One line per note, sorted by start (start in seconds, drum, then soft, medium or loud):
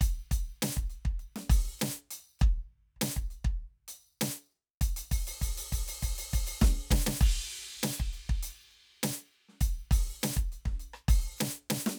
0.01 closed hi-hat loud
0.01 kick loud
0.31 closed hi-hat loud
0.31 kick medium
0.62 closed hi-hat loud
0.62 snare loud
0.77 kick medium
0.90 closed hi-hat soft
1.05 kick medium
1.05 snare soft
1.09 ride soft
1.20 closed hi-hat soft
1.36 snare medium
1.50 kick loud
1.50 percussion loud
1.79 snare loud
1.79 hi-hat pedal medium
2.11 closed hi-hat loud
2.39 kick loud
2.39 hi-hat pedal soft
2.96 kick soft
3.01 closed hi-hat loud
3.01 snare loud
3.17 kick medium
3.31 closed hi-hat soft
3.45 kick medium
3.45 crash soft
3.88 closed hi-hat loud
4.21 closed hi-hat loud
4.21 snare loud
4.81 closed hi-hat loud
4.81 kick medium
4.96 closed hi-hat loud
5.11 kick medium
5.11 percussion loud
5.27 percussion loud
5.42 kick medium
5.42 percussion loud
5.58 percussion loud
5.72 kick medium
5.72 percussion loud
5.88 percussion loud
6.03 kick medium
6.03 percussion loud
6.18 percussion loud
6.33 kick medium
6.33 percussion loud
6.47 percussion loud
6.62 kick loud
6.62 snare loud
6.91 kick loud
6.91 snare loud
7.07 snare loud
7.21 kick loud
7.21 hi-hat pedal medium
7.21 crash loud
7.77 kick soft
7.83 closed hi-hat loud
7.83 snare loud
8.00 kick medium
8.13 closed hi-hat soft
8.29 kick medium
8.43 closed hi-hat loud
8.71 closed hi-hat soft
9.03 closed hi-hat loud
9.03 snare loud
9.21 snare soft
9.49 snare soft
9.52 snare soft
9.61 closed hi-hat loud
9.61 kick loud
9.91 kick loud
9.91 percussion loud
10.22 closed hi-hat loud
10.22 snare loud
10.22 hi-hat pedal soft
10.37 kick medium
10.52 closed hi-hat soft
10.65 kick medium
10.65 snare soft
10.70 snare soft
10.73 snare soft
10.78 closed hi-hat medium
10.78 snare soft
10.81 snare soft
10.94 cross-stick medium
11.09 kick loud
11.09 percussion loud
11.38 snare loud
11.38 hi-hat pedal medium
11.70 snare loud
11.86 snare loud